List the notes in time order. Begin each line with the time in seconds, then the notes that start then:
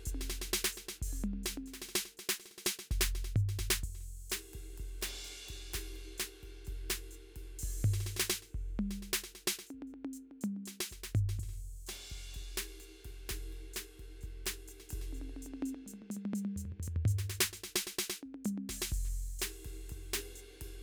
0.01 snare
0.06 kick, hi-hat pedal
0.14 kick, high tom
0.21 snare
0.30 snare
0.42 snare
0.53 snare
0.65 snare
0.73 hi-hat pedal
0.77 snare
0.89 snare
1.02 kick, hi-hat pedal
1.13 high tom
1.21 hi-hat pedal, mid tom
1.34 high tom
1.44 snare, hi-hat pedal
1.58 high tom
1.66 snare, hi-hat pedal
1.74 snare
1.77 snare
1.82 snare
1.89 snare
1.95 snare, hi-hat pedal
2.17 snare, hi-hat pedal
2.29 snare
2.40 snare, hi-hat pedal
2.46 snare
2.51 snare
2.58 snare
2.66 snare, hi-hat pedal
2.79 snare
2.91 kick, snare, hi-hat pedal
3.01 kick, snare
3.15 snare
3.25 snare
3.36 hi-hat pedal, floor tom
3.49 snare
3.56 kick, hi-hat pedal
3.66 kick
3.71 snare
3.81 kick, hi-hat pedal, crash
3.90 kick
3.95 snare
4.01 snare
4.30 snare, hi-hat pedal, ride
4.54 kick, snare, ride
4.61 kick, snare
4.65 snare
4.70 snare
4.77 kick, hi-hat pedal, ride
4.85 kick
5.02 snare, ride
5.25 hi-hat pedal, ride
5.49 kick, ride
5.56 kick
5.73 kick, snare, hi-hat pedal, ride
5.80 kick
5.96 ride
6.18 snare, hi-hat pedal, ride
6.43 kick, ride
6.65 kick, hi-hat pedal, ride
6.74 kick
6.90 snare, ride
7.11 hi-hat pedal, ride
7.17 snare
7.36 kick, ride
7.59 hi-hat pedal
7.64 kick
7.70 kick
7.85 floor tom
7.94 snare
8.00 snare
8.07 snare
8.20 snare
8.30 snare
8.42 snare
8.55 kick
8.61 kick
8.79 mid tom
8.91 snare
9.03 snare
9.13 snare
9.24 snare
9.35 snare
9.47 snare, hi-hat pedal
9.59 snare
9.67 hi-hat pedal, high tom
9.74 kick
9.82 high tom
9.88 hi-hat pedal
9.94 high tom
10.05 high tom
10.13 hi-hat pedal
10.31 high tom
10.41 hi-hat pedal, mid tom
10.57 high tom
10.66 snare, hi-hat pedal
10.81 snare
10.90 kick, snare, hi-hat pedal
11.04 snare
11.15 kick, hi-hat pedal, floor tom
11.29 snare
11.37 kick, hi-hat pedal, crash
11.43 kick, snare
11.49 snare
11.53 snare
11.58 snare
11.87 snare, hi-hat pedal, ride
12.10 kick, ride
12.17 kick, snare
12.21 snare
12.25 snare
12.34 kick, hi-hat pedal, ride
12.42 kick
12.58 snare, ride
12.80 hi-hat pedal, ride
12.94 snare
13.05 kick, ride
13.11 kick
13.29 kick, snare, hi-hat pedal, ride
13.36 kick
13.53 ride
13.74 snare, hi-hat pedal, ride
13.96 snare
14.00 kick, ride
14.12 snare
14.17 snare
14.21 kick, hi-hat pedal, ride
14.46 snare, ride
14.68 hi-hat pedal, ride
14.80 snare
14.89 kick, hi-hat pedal, ride
15.02 snare
15.13 kick, hi-hat pedal, high tom
15.22 high tom
15.30 high tom
15.37 high tom
15.42 hi-hat pedal
15.47 high tom
15.54 high tom
15.63 hi-hat pedal, high tom
15.75 high tom
15.87 hi-hat pedal, mid tom
15.94 mid tom
16.02 mid tom
16.11 hi-hat pedal, mid tom
16.17 mid tom
16.26 mid tom
16.34 hi-hat pedal, mid tom
16.45 mid tom
16.56 floor tom, hi-hat pedal
16.66 floor tom
16.72 floor tom
16.80 floor tom, hi-hat pedal
16.88 floor tom
16.96 floor tom
17.06 hi-hat pedal, floor tom
17.19 snare
17.30 kick, snare, hi-hat pedal
17.41 snare
17.53 snare, hi-hat pedal
17.64 snare
17.76 snare, hi-hat pedal
17.87 snare
17.99 snare, hi-hat pedal
18.10 snare
18.23 kick, high tom
18.35 high tom
18.45 hi-hat pedal, mid tom
18.58 high tom
18.69 kick, snare, hi-hat pedal
18.75 kick
18.82 snare
18.92 kick, snare, crash
19.04 kick, snare
19.39 snare, hi-hat pedal, ride
19.52 snare
19.65 kick, snare, ride
19.71 kick, snare
19.80 snare
19.84 snare
19.89 kick, hi-hat pedal, ride
19.98 kick
20.14 snare, ride
20.36 hi-hat pedal
20.61 kick, ride
20.67 kick